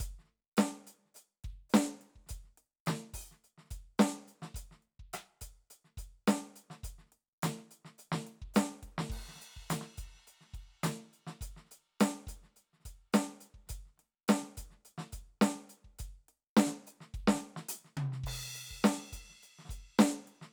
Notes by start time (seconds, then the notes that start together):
0.00 closed hi-hat, kick
0.05 kick
0.09 kick
0.19 snare
0.24 snare
0.57 closed hi-hat, snare
0.87 closed hi-hat
1.05 snare
1.14 closed hi-hat, hi-hat pedal
1.44 kick, closed hi-hat
1.50 kick
1.69 hi-hat pedal
1.74 closed hi-hat, snare
2.01 closed hi-hat
2.15 kick
2.26 closed hi-hat, snare
2.30 kick
2.44 snare
2.57 closed hi-hat
2.86 closed hi-hat, snare
3.13 open hi-hat, kick
3.31 snare
3.44 closed hi-hat
3.58 snare
3.64 snare
3.70 closed hi-hat, kick
3.98 closed hi-hat, snare, hi-hat pedal
4.15 snare
4.28 closed hi-hat
4.42 snare
4.54 closed hi-hat, kick
4.71 snare
4.79 snare, closed hi-hat
4.99 kick
5.13 closed hi-hat, cross-stick
5.41 closed hi-hat, kick
5.70 closed hi-hat
5.84 snare
5.97 closed hi-hat, kick
6.27 closed hi-hat, snare
6.56 closed hi-hat
6.70 snare
6.83 closed hi-hat, kick
6.98 snare
7.05 snare
7.12 closed hi-hat
7.42 closed hi-hat, snare
7.57 snare
7.71 closed hi-hat
7.85 snare
7.98 closed hi-hat, hi-hat pedal
8.12 snare
8.27 closed hi-hat
8.42 kick
8.54 closed hi-hat, snare, hi-hat pedal
8.69 snare
8.83 kick, closed hi-hat
8.98 snare
9.10 kick, crash
9.16 kick
9.19 kick
9.28 snare
9.35 snare
9.41 closed hi-hat
9.56 kick
9.70 closed hi-hat, snare
9.81 snare
9.97 closed hi-hat, kick
10.05 kick
10.14 snare
10.27 closed hi-hat
10.41 snare
10.46 snare
10.53 kick, closed hi-hat
10.83 closed hi-hat, snare
11.13 closed hi-hat
11.27 snare
11.41 closed hi-hat, kick
11.56 snare
11.65 snare
11.71 closed hi-hat
12.00 closed hi-hat, snare
12.27 closed hi-hat, kick
12.43 snare
12.56 closed hi-hat
12.73 snare
12.80 snare
12.85 closed hi-hat, kick
13.13 closed hi-hat, snare, hi-hat pedal
13.27 snare
13.40 closed hi-hat
13.54 kick
13.67 closed hi-hat, kick, snare
13.85 snare
13.98 snare, closed hi-hat
14.00 snare
14.28 closed hi-hat, snare
14.41 snare
14.57 closed hi-hat, kick
14.70 snare
14.85 closed hi-hat
14.98 snare
15.12 closed hi-hat, kick
15.41 closed hi-hat, snare
15.54 snare
15.69 closed hi-hat
15.84 kick, snare
15.99 closed hi-hat, kick
16.28 closed hi-hat
16.57 closed hi-hat, snare
16.67 snare
16.87 open hi-hat, hi-hat pedal
17.00 snare
17.14 kick, closed hi-hat
17.20 kick
17.22 kick
17.27 snare
17.34 snare
17.40 closed hi-hat
17.56 snare
17.68 closed hi-hat
17.84 snare
17.97 high tom
18.12 snare
18.23 kick, crash
18.29 kick
18.32 kick
18.48 snare
18.55 closed hi-hat
18.70 kick
18.84 open hi-hat, snare
18.97 snare
19.13 closed hi-hat, kick
19.30 snare
19.43 closed hi-hat
19.58 snare
19.65 snare
19.69 closed hi-hat, kick
19.98 open hi-hat, snare
20.27 closed hi-hat
20.41 snare